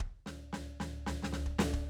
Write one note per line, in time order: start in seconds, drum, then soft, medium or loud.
0.00 kick medium
0.26 snare medium
0.26 floor tom medium
0.53 snare medium
0.53 floor tom medium
0.80 snare medium
0.80 floor tom medium
1.07 snare medium
1.07 floor tom medium
1.23 snare medium
1.23 floor tom medium
1.33 snare medium
1.33 floor tom medium
1.46 kick soft
1.59 snare loud
1.59 floor tom loud
1.74 kick medium